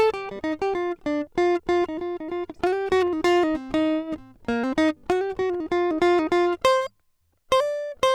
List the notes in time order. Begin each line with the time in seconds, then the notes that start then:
0.00 A4
0.11 G4
0.33 G3
0.45 D#4
0.63 G4
0.76 F4
1.07 D4
1.39 F4
1.70 F4
1.85 D#4
1.99 F4
2.22 D#4
2.33 F4
2.65 G4
2.93 F#4
3.03 F4
3.14 D#4
3.26 F4
3.44 D#4
3.57 C4
3.73 D4 D#4
4.14 C4
4.50 A#3
4.65 C4
4.79 D#4
5.11 F#4
5.22 G4
5.41 F#4
5.51 F4
5.62 E4
5.73 F4
5.92 D#4
6.03 F4
6.20 D#4
6.33 F4
6.66 C5
7.53 C5
7.62 D5
8.04 C5